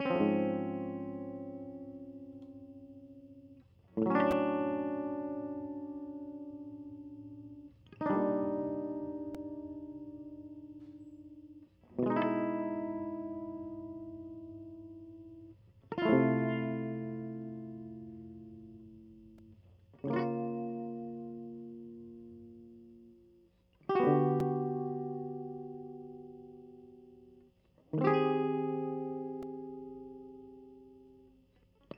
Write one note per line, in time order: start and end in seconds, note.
0.00 3.62 C#4
0.06 3.65 C4
0.11 3.26 F3
0.22 3.65 G#2
3.99 7.74 A2
4.06 7.67 F#3
4.06 7.73 C#4
4.15 7.73 D4
8.01 11.67 D#4
8.06 11.67 D4
8.10 10.86 G3
8.17 11.05 A#2
12.00 15.48 B2
12.06 14.97 G#3
12.06 15.53 D#4
12.16 15.55 E4
15.98 18.83 F4
16.02 19.58 A3
16.02 19.55 E4
16.13 19.55 C3
20.05 23.01 C#3
20.10 23.47 A#3
20.10 23.50 F4
20.16 20.25 F#4
23.89 27.49 G4
23.95 27.45 F#4
24.00 27.51 B3
24.08 27.25 D3
27.94 30.66 D#3
28.01 31.47 C4
28.01 31.34 G4
28.07 31.27 G#4